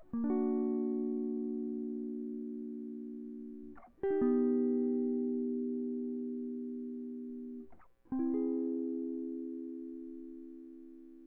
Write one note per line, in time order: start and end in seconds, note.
0.14 3.75 A#3
0.24 3.78 D4
0.30 2.87 F#4
2.88 3.35 F#4
4.03 7.67 G4
4.11 7.12 D#4
4.22 7.66 B3
8.12 11.26 C4
8.19 11.26 E4
8.34 10.37 G#4